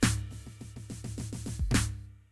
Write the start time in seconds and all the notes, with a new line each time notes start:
0.01 snare, floor tom, hi-hat pedal
0.31 snare, floor tom, hi-hat pedal
0.46 snare, floor tom
0.59 snare, floor tom, hi-hat pedal
0.76 snare, floor tom
0.88 snare, floor tom, hi-hat pedal
1.04 snare, floor tom
1.16 snare, floor tom, hi-hat pedal
1.33 snare, floor tom
1.43 snare, hi-hat pedal
1.48 floor tom
1.60 kick
1.71 snare, floor tom, hi-hat pedal